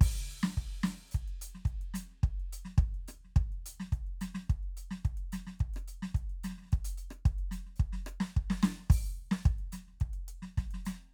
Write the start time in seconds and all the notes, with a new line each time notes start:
0.01 open hi-hat, kick, crash
0.43 snare
0.57 kick, open hi-hat
0.71 open hi-hat
0.83 open hi-hat, snare
0.97 snare
1.11 kick, hi-hat pedal
1.16 closed hi-hat
1.28 closed hi-hat
1.41 closed hi-hat
1.55 snare
1.65 kick, closed hi-hat
1.81 closed hi-hat
1.94 closed hi-hat, snare
2.11 snare
2.23 kick, snare, closed hi-hat
2.40 closed hi-hat
2.53 closed hi-hat
2.65 snare
2.78 kick, closed hi-hat
2.94 closed hi-hat
3.08 closed hi-hat, cross-stick
3.24 snare
3.36 kick, closed hi-hat
3.52 closed hi-hat
3.66 closed hi-hat
3.80 snare
3.92 kick, closed hi-hat
4.06 closed hi-hat
4.21 closed hi-hat, snare
4.34 snare
4.50 kick, closed hi-hat
4.63 closed hi-hat
4.77 closed hi-hat
4.91 snare
5.05 kick, closed hi-hat
5.17 closed hi-hat
5.32 closed hi-hat, snare
5.47 snare
5.59 kick, closed hi-hat
5.74 cross-stick, closed hi-hat
5.88 closed hi-hat
6.02 snare
6.14 kick, closed hi-hat
6.30 closed hi-hat
6.44 closed hi-hat, snare
6.49 snare
6.58 snare
6.62 snare
6.66 snare
6.70 kick, snare, closed hi-hat
6.75 snare
6.79 snare
6.84 closed hi-hat
6.97 closed hi-hat
7.11 cross-stick
7.25 kick, closed hi-hat
7.38 closed hi-hat
7.51 open hi-hat, snare
7.66 snare
7.76 kick, hi-hat pedal
7.93 snare
8.06 cross-stick
8.20 snare
8.36 kick
8.50 snare
8.61 kick, snare
8.79 snare
8.90 open hi-hat, kick
9.31 snare
9.42 kick, hi-hat pedal
9.47 closed hi-hat
9.58 closed hi-hat
9.72 closed hi-hat, snare
9.88 snare
10.00 kick, closed hi-hat
10.13 closed hi-hat
10.28 closed hi-hat
10.42 snare
10.57 kick, snare, closed hi-hat
10.71 snare, closed hi-hat
10.83 open hi-hat, kick, snare